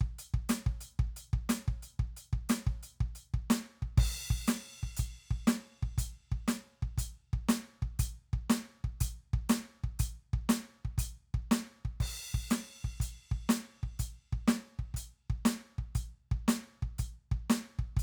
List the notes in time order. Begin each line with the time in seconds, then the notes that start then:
0.01 kick
0.19 closed hi-hat
0.34 kick
0.49 closed hi-hat, snare
0.66 kick
0.81 closed hi-hat
0.99 kick
1.16 closed hi-hat
1.33 kick
1.49 closed hi-hat, snare
1.68 kick
1.83 closed hi-hat
1.99 kick
2.17 closed hi-hat
2.33 kick
2.49 closed hi-hat, snare
2.67 kick
2.83 closed hi-hat
3.01 kick
3.15 closed hi-hat
3.34 kick
3.50 closed hi-hat, snare
3.82 kick
3.98 kick, crash
4.31 kick
4.48 closed hi-hat, snare
4.83 kick
4.97 closed hi-hat, kick
5.31 kick
5.47 closed hi-hat, snare
5.83 kick
5.98 closed hi-hat, kick
6.32 kick
6.48 closed hi-hat, snare
6.83 kick
6.98 closed hi-hat, kick
7.33 kick
7.49 closed hi-hat, snare
7.82 kick
7.99 closed hi-hat, kick
8.33 kick
8.50 closed hi-hat, snare
8.84 kick
9.01 closed hi-hat, kick
9.34 kick
9.49 closed hi-hat, snare
9.84 kick
9.99 closed hi-hat, kick
10.34 kick
10.49 closed hi-hat, snare
10.85 kick
10.98 closed hi-hat, kick
11.34 kick
11.51 closed hi-hat, snare
11.85 kick
12.00 kick, crash
12.34 kick
12.51 closed hi-hat, snare
12.84 kick
13.00 closed hi-hat, kick
13.32 kick
13.49 closed hi-hat, snare
13.83 kick
13.99 closed hi-hat, kick
14.33 kick
14.48 closed hi-hat, snare
14.79 kick
14.94 closed hi-hat, kick
15.30 kick
15.45 closed hi-hat, snare
15.78 kick
15.95 closed hi-hat, kick
16.32 kick
16.48 closed hi-hat, snare
16.83 kick
16.99 closed hi-hat, kick
17.32 kick
17.50 closed hi-hat, snare
17.79 kick
17.97 closed hi-hat, kick